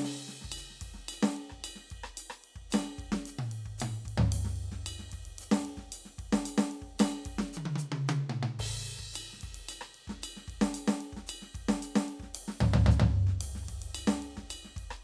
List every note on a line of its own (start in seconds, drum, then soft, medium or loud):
0.01 snare soft
0.01 crash medium
0.05 hi-hat pedal medium
0.29 snare soft
0.42 kick soft
0.42 snare soft
0.52 snare soft
0.52 ride bell loud
0.58 hi-hat pedal medium
0.70 snare soft
0.82 kick soft
0.82 ride medium
0.88 kick soft
0.94 snare soft
0.99 snare soft
1.03 snare soft
1.09 hi-hat pedal medium
1.09 ride bell loud
1.23 snare loud
1.37 ride soft
1.50 kick soft
1.50 cross-stick medium
1.64 hi-hat pedal medium
1.64 ride bell loud
1.76 snare soft
1.91 kick soft
1.91 ride soft
1.99 kick soft
2.04 cross-stick medium
2.18 hi-hat pedal medium
2.18 ride bell loud
2.30 cross-stick medium
2.44 ride soft
2.56 kick soft
2.71 snare medium
2.71 hi-hat pedal medium
2.71 ride bell loud
2.81 snare soft
2.99 kick soft
2.99 ride soft
3.05 kick soft
3.12 snare medium
3.26 hi-hat pedal medium
3.26 ride medium
3.39 mid tom loud
3.52 ride medium
3.66 kick soft
3.78 hi-hat pedal medium
3.78 mid tom loud
3.78 ride bell loud
4.06 kick soft
4.06 ride medium
4.12 kick soft
4.18 floor tom loud
4.32 hi-hat pedal medium
4.32 ride loud
4.45 snare soft
4.56 ride soft
4.72 kick soft
4.72 snare soft
4.86 hi-hat pedal medium
4.86 ride bell loud
5.00 snare soft
5.10 kick soft
5.10 cross-stick soft
5.10 ride medium
5.19 kick soft
5.26 snare soft
5.26 ride medium
5.31 snare soft
5.39 hi-hat pedal medium
5.39 ride medium
5.52 snare loud
5.66 ride medium
5.77 kick soft
5.77 snare soft
5.83 kick soft
5.93 hi-hat pedal medium
5.93 ride bell loud
6.06 snare soft
6.19 kick soft
6.19 ride soft
6.25 kick soft
6.33 snare loud
6.46 hi-hat pedal medium
6.46 ride bell loud
6.58 snare loud
6.72 ride medium
6.82 kick soft
6.99 snare loud
6.99 hi-hat pedal medium
6.99 ride bell loud
7.26 kick soft
7.26 ride medium
7.39 snare medium
7.53 hi-hat pedal loud
7.57 high tom medium
7.66 high tom loud
7.76 hi-hat pedal loud
7.76 high tom loud
7.92 high tom loud
8.09 hi-hat pedal medium
8.09 high tom loud
8.30 mid tom loud
8.43 mid tom loud
8.60 kick soft
8.60 hi-hat pedal medium
8.60 crash loud
8.99 kick soft
9.04 kick soft
9.13 hi-hat pedal medium
9.13 ride bell loud
9.33 snare soft
9.40 snare soft
9.40 ride medium
9.43 kick soft
9.43 snare soft
9.54 snare soft
9.54 ride medium
9.69 hi-hat pedal medium
9.69 ride bell loud
9.81 cross-stick medium
9.95 ride soft
10.08 kick soft
10.08 snare medium
10.23 hi-hat pedal medium
10.23 ride bell loud
10.37 snare soft
10.48 kick soft
10.48 ride soft
10.54 kick soft
10.62 snare loud
10.75 hi-hat pedal medium
10.75 ride bell medium
10.88 snare medium
11.01 ride medium
11.13 kick soft
11.17 snare soft
11.27 hi-hat pedal medium
11.27 ride bell loud
11.42 snare soft
11.55 kick soft
11.55 ride medium
11.61 kick soft
11.69 snare medium
11.75 snare soft
11.82 hi-hat pedal medium
11.82 ride bell medium
11.96 snare loud
12.09 ride medium
12.20 kick soft
12.20 snare soft
12.25 kick soft
12.34 hi-hat pedal medium
12.34 ride loud
12.48 snare medium
12.61 kick soft
12.61 floor tom loud
12.68 kick soft
12.74 floor tom loud
12.87 floor tom loud
12.91 hi-hat pedal medium
13.00 floor tom loud
13.12 floor tom soft
13.27 kick soft
13.27 snare soft
13.41 hi-hat pedal medium
13.41 ride loud
13.55 snare soft
13.63 cross-stick soft
13.69 kick soft
13.69 ride medium
13.75 kick soft
13.82 snare soft
13.82 ride medium
13.87 snare soft
13.95 hi-hat pedal medium
13.95 ride bell loud
14.08 snare loud
14.15 snare soft
14.23 ride medium
14.37 kick soft
14.37 snare soft
14.50 hi-hat pedal medium
14.50 ride bell loud
14.65 snare soft
14.77 kick medium
14.77 ride medium
14.83 kick soft
14.91 cross-stick medium